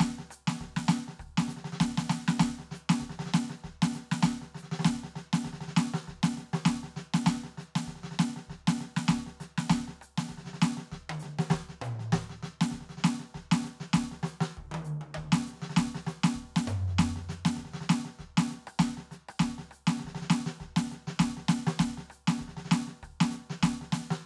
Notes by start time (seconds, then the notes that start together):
0.01 kick, snare
0.20 snare
0.32 cross-stick, hi-hat pedal
0.48 snare
0.62 kick, snare
0.78 snare
0.89 snare, hi-hat pedal
1.09 snare
1.21 kick, cross-stick
1.39 snare
1.49 snare, hi-hat pedal
1.58 snare
1.66 snare
1.74 snare
1.81 kick, snare
1.99 snare
2.11 snare
2.15 hi-hat pedal
2.29 snare
2.41 kick, snare
2.60 snare
2.72 snare, hi-hat pedal
2.90 snare
3.02 kick, snare
3.11 snare
3.20 snare
3.27 snare
3.35 snare, hi-hat pedal
3.51 snare
3.65 kick, snare
3.83 snare
3.95 snare, hi-hat pedal
4.13 snare
4.24 kick, snare
4.43 snare
4.56 snare, hi-hat pedal
4.64 snare
4.73 snare
4.80 snare
4.86 kick, snare
5.05 snare
5.17 snare, hi-hat pedal
5.34 snare
5.46 kick, snare
5.54 snare
5.62 snare
5.69 snare
5.78 snare, hi-hat pedal
5.95 snare
6.09 kick, snare
6.24 snare
6.39 snare, hi-hat pedal
6.54 snare
6.66 kick, snare
6.84 snare
6.97 snare, hi-hat pedal
7.15 snare
7.27 kick, snare
7.45 snare
7.59 snare, hi-hat pedal
7.77 snare
7.88 kick, snare
7.97 snare
8.04 snare
8.12 snare
8.20 snare, hi-hat pedal
8.37 snare
8.50 kick, snare
8.69 snare
8.79 snare, hi-hat pedal
8.98 snare
9.09 kick, snare
9.28 snare
9.41 snare, hi-hat pedal
9.59 snare
9.71 kick, snare
9.89 snare
10.03 cross-stick, hi-hat pedal
10.19 snare
10.30 kick, snare
10.39 snare
10.46 snare
10.47 snare
10.55 snare
10.62 snare, hi-hat pedal
10.78 snare
10.93 kick, snare
11.11 high tom
11.21 snare, hi-hat pedal
11.40 snare
11.51 kick, snare
11.70 snare
11.83 hi-hat pedal, mid tom
12.01 snare
12.14 kick, snare
12.31 snare
12.44 snare, hi-hat pedal
12.62 snare
12.72 kick, snare
12.82 snare
12.90 snare
12.98 snare
13.05 snare, hi-hat pedal
13.21 snare
13.35 kick, snare
13.53 snare
13.65 snare, hi-hat pedal
13.81 snare
13.94 kick, snare
14.13 snare
14.24 snare, hi-hat pedal
14.42 snare
14.58 kick, high tom
14.73 high tom
14.75 high tom
14.86 hi-hat pedal
15.02 high tom
15.16 kick, high tom
15.33 snare
15.48 snare, hi-hat pedal
15.54 snare
15.58 snare
15.63 snare
15.71 snare
15.78 kick, snare
15.96 snare
16.08 snare, hi-hat pedal
16.25 snare
16.37 kick
16.57 snare
16.69 floor tom, hi-hat pedal
16.89 snare
17.00 kick, snare
17.06 kick
17.17 snare
17.30 snare, hi-hat pedal
17.46 snare
17.58 kick, snare
17.66 snare
17.73 snare
17.75 snare
17.82 snare
17.91 snare, hi-hat pedal
18.06 snare
18.20 kick, snare
18.38 snare
18.51 snare, hi-hat pedal
18.68 cross-stick
18.80 kick, snare
18.98 snare
19.12 snare, hi-hat pedal
19.30 cross-stick
19.41 kick, snare
19.59 snare
19.72 cross-stick, hi-hat pedal
19.88 snare
20.01 snare
20.06 kick, snare
20.16 snare
20.23 snare
20.31 snare, hi-hat pedal
20.47 snare
20.61 kick, snare
20.77 snare
20.92 snare, hi-hat pedal
21.08 snare
21.20 kick, snare
21.38 snare
21.50 snare, hi-hat pedal
21.68 snare
21.80 kick, snare
21.99 snare
22.11 cross-stick, hi-hat pedal
22.29 snare
22.40 kick, snare
22.49 snare
22.58 snare
22.66 snare
22.72 snare, hi-hat pedal
22.88 snare
23.04 kick, cross-stick
23.22 snare
23.32 snare, hi-hat pedal
23.51 snare
23.64 kick, snare
23.82 snare
23.94 snare, hi-hat pedal
24.12 snare